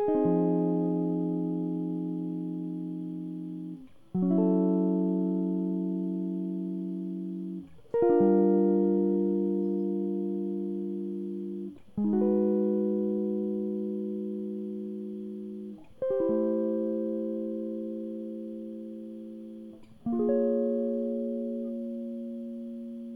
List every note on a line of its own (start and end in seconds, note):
0.00 3.61 G#4
0.09 3.79 D#4
0.16 3.92 C4
0.27 3.79 F3
4.16 7.63 F#3
4.23 7.70 C#4
4.31 7.63 E4
4.39 6.91 A4
7.95 11.56 A#4
8.03 11.74 F4
8.11 11.84 D4
8.22 11.74 G3
11.99 15.79 G#3
12.05 15.89 D#4
12.14 15.74 F#4
12.22 15.51 B4
16.03 19.79 C5
16.11 18.64 G4
16.21 19.82 E4
16.31 19.82 A3
20.07 23.17 A#3
20.13 23.17 F4
20.20 21.75 G#4
20.30 23.17 C#5